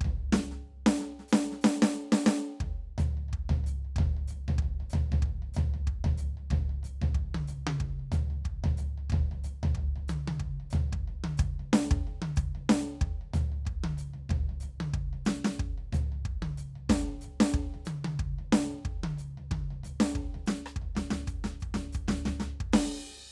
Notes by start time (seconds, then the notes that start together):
0.01 kick, floor tom
0.33 snare, hi-hat pedal
0.51 snare
0.86 snare
0.96 hi-hat pedal
1.01 snare
1.19 snare
1.28 hi-hat pedal
1.33 snare
1.52 snare
1.61 snare, hi-hat pedal
1.82 snare
1.92 hi-hat pedal
2.12 snare
2.24 snare, hi-hat pedal
2.60 kick, floor tom
2.98 floor tom, hi-hat pedal
3.17 floor tom
3.29 floor tom
3.33 kick
3.49 floor tom
3.64 floor tom, hi-hat pedal
3.85 floor tom
3.96 kick, floor tom
4.17 floor tom
4.28 floor tom, hi-hat pedal
4.48 floor tom
4.58 kick
4.62 floor tom
4.80 floor tom
4.90 floor tom, hi-hat pedal
5.12 floor tom
5.22 kick, floor tom
5.42 floor tom
5.54 floor tom, hi-hat pedal
5.74 floor tom
5.87 kick, floor tom
6.04 floor tom
6.18 floor tom, hi-hat pedal
6.37 floor tom
6.50 kick, floor tom
6.69 floor tom
6.83 kick, floor tom, hi-hat pedal
7.02 floor tom
7.15 kick, floor tom
7.35 high tom
7.48 floor tom, hi-hat pedal
7.67 high tom
7.80 kick, floor tom
8.00 floor tom
8.12 floor tom, hi-hat pedal
8.30 floor tom
8.45 kick, floor tom
8.64 floor tom
8.77 floor tom, hi-hat pedal
8.98 floor tom
9.10 kick, floor tom
9.31 floor tom
9.44 floor tom, hi-hat pedal
9.63 floor tom
9.75 kick, floor tom
9.96 floor tom
10.08 hi-hat pedal, high tom
10.28 high tom
10.40 kick, floor tom
10.60 floor tom
10.70 floor tom, hi-hat pedal
10.92 kick, floor tom
11.08 floor tom
11.24 high tom
11.37 kick, hi-hat pedal
11.42 floor tom
11.60 floor tom
11.73 snare
11.91 kick, floor tom
12.07 floor tom
12.22 high tom
12.36 kick, floor tom, hi-hat pedal
12.55 floor tom
12.69 snare
13.01 kick, floor tom
13.21 floor tom
13.34 floor tom, hi-hat pedal
13.52 floor tom
13.66 kick, floor tom
13.84 high tom
13.97 floor tom, hi-hat pedal
14.14 floor tom
14.30 kick, floor tom
14.49 floor tom
14.60 floor tom, hi-hat pedal
14.80 high tom
14.94 kick, floor tom
15.13 kick, floor tom
15.25 snare, hi-hat pedal
15.45 snare
15.58 kick, floor tom
15.78 floor tom
15.93 kick, floor tom, hi-hat pedal
16.12 floor tom
16.25 kick, floor tom
16.42 high tom
16.58 floor tom, hi-hat pedal
16.76 floor tom
16.89 kick, snare
17.08 kick, floor tom
17.21 kick, floor tom, hi-hat pedal
17.40 snare
17.54 kick, floor tom
17.74 floor tom
17.85 hi-hat pedal, high tom
18.05 high tom
18.19 kick, floor tom
18.39 floor tom
18.53 snare, hi-hat pedal
18.71 floor tom
18.85 kick, floor tom
19.04 high tom
19.18 floor tom, hi-hat pedal
19.38 floor tom
19.51 kick, high tom
19.71 floor tom
19.84 floor tom, hi-hat pedal
20.00 snare
20.15 kick, floor tom
20.34 floor tom
20.46 snare, hi-hat pedal
20.66 cross-stick
20.76 kick
20.82 floor tom
20.95 snare, floor tom
21.11 snare, floor tom
21.27 kick, hi-hat pedal
21.44 snare, floor tom
21.60 kick, hi-hat pedal
21.74 snare, floor tom
21.93 kick, hi-hat pedal
22.08 snare, floor tom
22.25 snare, floor tom
22.32 kick
22.40 snare, floor tom
22.60 kick
22.73 snare, crash